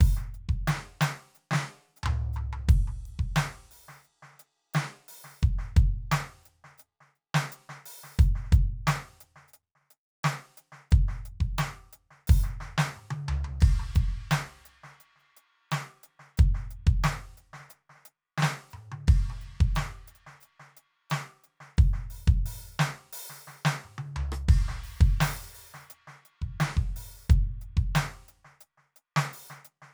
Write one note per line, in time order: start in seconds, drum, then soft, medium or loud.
0.01 open hi-hat loud
0.01 kick loud
0.16 snare soft
0.16 hi-hat pedal soft
0.35 closed hi-hat soft
0.49 kick medium
0.68 closed hi-hat loud
0.68 snare loud
1.01 closed hi-hat loud
1.01 snare loud
1.35 hi-hat pedal medium
1.51 snare loud
1.54 snare loud
1.97 hi-hat pedal medium
2.04 floor tom loud
2.04 mid tom loud
2.34 floor tom medium
2.34 hi-hat pedal medium
2.39 kick soft
2.53 floor tom medium
2.69 kick loud
2.69 ride medium
2.88 floor tom soft
3.06 ride soft
3.19 kick medium
3.36 snare loud
3.36 ride medium
3.71 open hi-hat medium
3.89 snare soft
4.04 hi-hat pedal soft
4.23 snare soft
4.33 snare soft
4.40 closed hi-hat medium
4.74 closed hi-hat loud
4.74 snare loud
5.09 open hi-hat medium
5.25 snare soft
5.41 closed hi-hat soft
5.41 kick loud
5.41 hi-hat pedal soft
5.59 snare soft
5.77 closed hi-hat medium
5.77 kick loud
6.12 closed hi-hat loud
6.12 snare loud
6.43 closed hi-hat medium
6.43 hi-hat pedal soft
6.64 snare soft
6.78 closed hi-hat medium
6.78 hi-hat pedal medium
7.01 snare soft
7.16 closed hi-hat soft
7.35 snare loud
7.52 closed hi-hat loud
7.70 snare medium
7.86 open hi-hat loud
8.04 snare soft
8.19 open hi-hat medium
8.19 kick loud
8.19 hi-hat pedal soft
8.36 snare soft
8.45 snare soft
8.53 closed hi-hat medium
8.53 kick loud
8.87 closed hi-hat loud
8.87 snare loud
9.12 hi-hat pedal soft
9.21 closed hi-hat medium
9.36 snare soft
9.48 hi-hat pedal medium
9.54 closed hi-hat medium
9.76 snare soft
9.81 snare soft
9.85 snare soft
9.91 closed hi-hat medium
10.24 closed hi-hat medium
10.24 snare loud
10.58 closed hi-hat medium
10.72 snare soft
10.91 closed hi-hat medium
10.91 kick loud
11.09 snare soft
11.26 closed hi-hat medium
11.41 kick medium
11.59 closed hi-hat loud
11.59 snare loud
11.93 closed hi-hat medium
12.11 snare soft
12.28 open hi-hat loud
12.28 kick loud
12.44 snare soft
12.61 snare medium
12.78 snare loud
12.78 hi-hat pedal soft
12.96 mid tom soft
13.11 high tom loud
13.29 floor tom loud
13.45 floor tom medium
13.61 kick loud
13.61 crash medium
13.80 floor tom medium
13.96 closed hi-hat medium
13.96 kick loud
14.31 closed hi-hat loud
14.31 snare loud
14.66 closed hi-hat medium
14.84 snare soft
15.01 closed hi-hat medium
15.16 snare soft
15.16 hi-hat pedal soft
15.21 snare soft
15.24 snare soft
15.37 closed hi-hat medium
15.72 closed hi-hat loud
15.72 snare loud
16.04 closed hi-hat medium
16.20 snare soft
16.38 closed hi-hat medium
16.38 kick loud
16.55 snare soft
16.71 closed hi-hat medium
16.87 kick loud
17.04 closed hi-hat medium
17.04 snare loud
17.38 closed hi-hat medium
17.54 snare soft
17.60 snare soft
17.70 closed hi-hat medium
17.70 snare soft
17.70 hi-hat pedal medium
17.90 snare soft
17.96 snare soft
18.06 closed hi-hat medium
18.38 snare loud
18.38 hi-hat pedal medium
18.43 snare loud
18.71 hi-hat pedal medium
18.71 mid tom medium
18.92 high tom medium
19.08 kick loud
19.08 crash medium
19.30 high tom soft
19.42 closed hi-hat soft
19.61 kick loud
19.76 closed hi-hat loud
19.76 snare medium
20.08 closed hi-hat medium
20.15 closed hi-hat soft
20.27 snare soft
20.41 closed hi-hat medium
20.41 hi-hat pedal medium
20.60 snare soft
20.71 snare soft
20.77 closed hi-hat medium
21.11 closed hi-hat loud
21.11 snare loud
21.44 closed hi-hat soft
21.57 snare soft
21.57 closed hi-hat soft
21.78 kick loud
21.78 open hi-hat soft
21.94 snare soft
22.11 open hi-hat medium
22.28 kick loud
22.46 open hi-hat loud
22.80 snare loud
23.13 open hi-hat loud
23.30 snare soft
23.48 snare soft
23.65 snare loud
23.85 mid tom soft
23.98 high tom loud
24.16 floor tom loud
24.32 cross-stick medium
24.49 kick loud
24.49 crash medium
24.69 snare medium
24.84 open hi-hat medium
25.01 kick loud
25.21 open hi-hat loud
25.21 snare loud
25.55 open hi-hat medium
25.74 snare soft
25.90 closed hi-hat loud
26.08 snare soft
26.26 closed hi-hat medium
26.42 kick medium
26.61 closed hi-hat loud
26.61 snare loud
26.77 kick medium
26.96 open hi-hat medium
27.25 hi-hat pedal soft
27.30 closed hi-hat medium
27.30 kick loud
27.62 closed hi-hat medium
27.77 kick loud
27.95 closed hi-hat loud
27.95 snare loud
28.29 closed hi-hat medium
28.45 snare soft
28.61 closed hi-hat medium
28.61 hi-hat pedal medium
28.78 snare soft
28.96 closed hi-hat medium
29.17 snare loud
29.34 open hi-hat medium
29.50 snare soft
29.65 closed hi-hat medium
29.82 snare soft